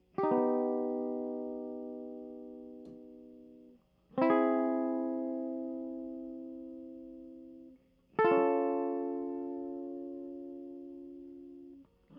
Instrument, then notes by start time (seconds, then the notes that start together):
electric guitar
0.19 G4
0.24 D#4
0.32 B3
4.18 C4 E4
4.30 G#4
8.19 A4
8.25 F4
8.32 C#4